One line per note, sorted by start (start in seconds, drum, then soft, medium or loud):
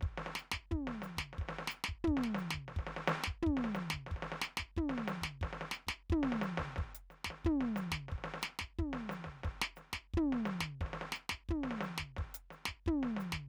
0.01 kick soft
0.01 snare soft
0.11 snare soft
0.18 snare medium
0.26 snare soft
0.35 snare medium
0.35 hi-hat pedal soft
0.52 kick soft
0.52 snare loud
0.70 kick soft
0.70 floor tom medium
0.87 snare soft
1.02 snare soft
1.02 hi-hat pedal medium
1.17 kick soft
1.17 snare medium
1.33 snare soft
1.38 kick soft
1.38 snare soft
1.48 snare soft
1.59 snare soft
1.67 snare medium
1.67 hi-hat pedal medium
1.84 snare loud
1.88 kick soft
2.03 floor tom loud
2.07 kick soft
2.17 snare soft
2.24 snare soft
2.35 snare medium
2.35 hi-hat pedal medium
2.51 kick soft
2.51 snare medium
2.68 snare soft
2.76 kick soft
2.76 snare soft
2.87 snare soft
2.96 snare soft
3.07 snare loud
3.07 hi-hat pedal soft
3.24 kick soft
3.24 snare loud
3.42 floor tom loud
3.46 kick soft
3.57 snare soft
3.64 snare soft
3.74 snare medium
3.74 hi-hat pedal soft
3.90 kick soft
3.90 snare loud
4.06 snare soft
4.11 kick soft
4.16 snare soft
4.22 snare medium
4.32 snare soft
4.42 snare loud
4.42 hi-hat pedal soft
4.57 kick soft
4.57 snare loud
4.77 kick soft
4.77 floor tom medium
4.89 snare soft
4.98 snare soft
5.07 snare medium
5.07 hi-hat pedal medium
5.21 kick soft
5.21 snare medium
5.41 kick soft
5.41 snare soft
5.53 snare soft
5.61 snare soft
5.71 snare medium
5.71 hi-hat pedal soft
5.87 kick soft
5.87 snare loud
6.10 kick soft
6.10 floor tom loud
6.23 snare medium
6.32 snare medium
6.41 snare medium
6.41 hi-hat pedal soft
6.57 kick soft
6.57 snare medium
6.76 kick soft
6.76 snare soft
6.95 open hi-hat medium
7.10 snare soft
7.10 hi-hat pedal soft
7.24 kick soft
7.24 snare medium
7.30 snare soft
7.45 kick soft
7.45 floor tom loud
7.61 snare soft
7.76 snare soft
7.76 hi-hat pedal medium
7.91 kick soft
7.91 snare medium
8.08 kick soft
8.08 snare soft
8.18 snare soft
8.24 snare soft
8.34 snare soft
8.42 snare medium
8.42 hi-hat pedal medium
8.59 kick soft
8.59 snare medium
8.78 kick soft
8.78 floor tom medium
8.93 snare soft
9.09 snare soft
9.09 hi-hat pedal medium
9.24 kick soft
9.24 snare soft
9.43 kick soft
9.43 snare soft
9.62 snare loud
9.76 snare soft
9.76 hi-hat pedal soft
9.93 kick soft
9.93 snare medium
10.14 kick soft
10.14 floor tom loud
10.32 snare soft
10.45 snare medium
10.45 hi-hat pedal soft
10.60 kick soft
10.60 snare medium
10.81 kick soft
10.81 snare soft
10.86 snare soft
10.91 snare soft
10.93 snare soft
11.01 snare soft
11.12 snare medium
11.12 hi-hat pedal soft
11.29 kick soft
11.29 snare loud
11.49 kick soft
11.49 floor tom medium
11.63 snare soft
11.71 snare soft
11.78 snare soft
11.81 snare medium
11.81 hi-hat pedal soft
11.98 kick soft
11.98 snare medium
12.17 kick soft
12.17 snare soft
12.34 closed hi-hat loud
12.50 snare soft
12.50 hi-hat pedal soft
12.65 kick soft
12.65 snare medium
12.86 kick soft
12.86 floor tom loud
13.03 snare soft
13.17 snare soft
13.17 hi-hat pedal medium
13.32 kick soft
13.32 snare medium